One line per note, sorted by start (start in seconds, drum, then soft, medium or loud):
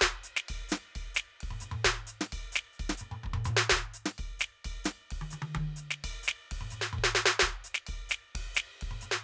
0.01 kick soft
0.01 snare loud
0.10 snare soft
0.23 hi-hat pedal medium
0.36 snare medium
0.48 kick soft
0.48 ride bell medium
0.55 kick soft
0.69 snare medium
0.69 hi-hat pedal medium
0.95 kick soft
0.95 ride bell medium
1.14 snare loud
1.14 hi-hat pedal medium
1.40 kick soft
1.40 ride medium
1.50 mid tom medium
1.60 hi-hat pedal medium
1.60 mid tom medium
1.71 mid tom medium
1.84 kick soft
1.84 snare loud
1.93 snare soft
2.07 hi-hat pedal medium
2.21 snare medium
2.32 kick soft
2.32 ride bell medium
2.52 snare medium
2.52 hi-hat pedal medium
2.73 hi-hat pedal soft
2.79 kick soft
2.79 ride bell medium
2.89 snare medium
2.97 hi-hat pedal medium
2.97 mid tom medium
3.11 mid tom medium
3.23 kick soft
3.23 mid tom medium
3.31 kick soft
3.44 hi-hat pedal medium
3.44 mid tom loud
3.57 snare loud
3.69 kick soft
3.69 snare loud
3.76 kick soft
3.76 snare soft
3.93 hi-hat pedal medium
4.06 snare medium
4.18 kick soft
4.18 ride bell medium
4.39 snare medium
4.39 hi-hat pedal medium
4.64 kick soft
4.64 ride bell medium
4.84 snare medium
4.84 hi-hat pedal medium
5.11 kick soft
5.11 ride medium
5.17 kick soft
5.17 high tom medium
5.30 hi-hat pedal medium
5.30 high tom medium
5.42 high tom medium
5.55 kick soft
5.55 high tom loud
5.76 hi-hat pedal medium
5.91 snare medium
6.04 kick soft
6.04 ride bell loud
6.23 hi-hat pedal medium
6.28 snare loud
6.51 kick soft
6.51 ride medium
6.61 mid tom medium
6.70 hi-hat pedal medium
6.70 mid tom soft
6.81 snare medium
6.93 mid tom medium
6.98 kick soft
7.04 kick soft
7.04 snare loud
7.15 snare loud
7.15 hi-hat pedal medium
7.26 snare loud
7.39 kick soft
7.39 snare loud
7.47 kick soft
7.47 snare soft
7.64 hi-hat pedal medium
7.74 snare medium
7.87 kick soft
7.87 ride bell medium
8.09 snare medium
8.09 hi-hat pedal medium
8.35 kick soft
8.35 ride loud
8.55 snare loud
8.55 hi-hat pedal medium
8.81 kick soft
8.81 ride medium
8.88 kick soft
8.88 mid tom medium
9.01 hi-hat pedal medium
9.01 mid tom medium
9.11 snare medium